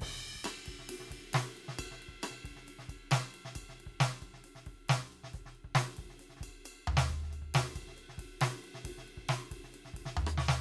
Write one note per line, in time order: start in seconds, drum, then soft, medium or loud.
0.01 kick soft
0.01 hi-hat pedal soft
0.01 crash loud
0.36 kick soft
0.41 kick soft
0.45 cross-stick medium
0.45 hi-hat pedal medium
0.45 ride bell loud
0.58 snare soft
0.67 kick soft
0.67 ride medium
0.75 kick soft
0.80 snare soft
0.89 hi-hat pedal soft
0.89 ride loud
1.00 snare soft
1.08 kick soft
1.08 snare soft
1.13 ride medium
1.17 kick soft
1.34 snare loud
1.34 hi-hat pedal medium
1.34 ride loud
1.58 ride soft
1.69 snare medium
1.79 kick soft
1.79 hi-hat pedal soft
1.79 ride bell loud
1.86 kick soft
1.92 snare soft
2.03 ride medium
2.09 kick soft
2.14 kick soft
2.23 cross-stick medium
2.23 hi-hat pedal medium
2.23 ride bell loud
2.31 snare soft
2.45 kick soft
2.45 ride medium
2.51 kick soft
2.57 snare soft
2.68 hi-hat pedal soft
2.68 ride medium
2.80 snare soft
2.90 kick soft
2.90 ride bell medium
3.12 snare loud
3.12 hi-hat pedal medium
3.12 ride bell loud
3.35 ride medium
3.46 snare medium
3.56 kick soft
3.56 hi-hat pedal medium
3.56 ride bell medium
3.63 kick soft
3.70 snare soft
3.81 ride medium
3.87 kick soft
3.93 kick soft
4.01 snare loud
4.01 hi-hat pedal soft
4.01 ride bell medium
4.09 snare soft
4.23 kick soft
4.23 ride bell soft
4.34 snare soft
4.45 hi-hat pedal soft
4.45 ride medium
4.56 snare soft
4.67 kick soft
4.67 ride soft
4.90 snare loud
4.90 hi-hat pedal medium
4.90 ride medium
4.90 floor tom soft
5.13 ride bell soft
5.24 snare medium
5.34 kick soft
5.34 snare soft
5.34 hi-hat pedal medium
5.34 ride soft
5.41 kick soft
5.47 snare soft
5.56 ride soft
5.65 kick soft
5.71 kick soft
5.76 snare loud
5.76 hi-hat pedal medium
5.76 ride loud
5.98 kick soft
5.98 ride medium
6.06 kick soft
6.10 snare soft
6.20 hi-hat pedal medium
6.20 ride medium
6.30 snare soft
6.37 snare soft
6.42 kick soft
6.42 ride bell medium
6.48 kick soft
6.65 hi-hat pedal medium
6.65 ride bell medium
6.88 floor tom loud
6.98 snare loud
7.10 kick soft
7.10 hi-hat pedal soft
7.10 ride bell medium
7.21 kick soft
7.21 snare soft
7.31 snare soft
7.31 ride bell soft
7.43 kick soft
7.48 kick soft
7.55 snare loud
7.55 hi-hat pedal medium
7.55 ride loud
7.66 snare soft
7.76 kick soft
7.76 ride bell medium
7.83 kick soft
7.89 snare soft
7.97 hi-hat pedal medium
7.97 ride soft
8.10 snare soft
8.19 kick soft
8.19 ride medium
8.26 kick soft
8.42 snare loud
8.42 hi-hat pedal medium
8.42 ride loud
8.65 ride soft
8.75 snare soft
8.85 kick soft
8.85 hi-hat pedal medium
8.85 ride loud
8.92 kick soft
8.99 snare soft
9.09 ride soft
9.18 kick soft
9.24 kick soft
9.30 snare loud
9.30 hi-hat pedal medium
9.30 ride loud
9.52 kick soft
9.52 ride medium
9.58 kick soft
9.65 snare soft
9.73 hi-hat pedal soft
9.73 ride medium
9.86 snare soft
9.94 kick soft
9.94 ride medium
10.01 kick soft
10.06 snare medium
10.18 hi-hat pedal soft
10.18 floor tom loud
10.27 cross-stick medium
10.39 snare loud
10.49 snare loud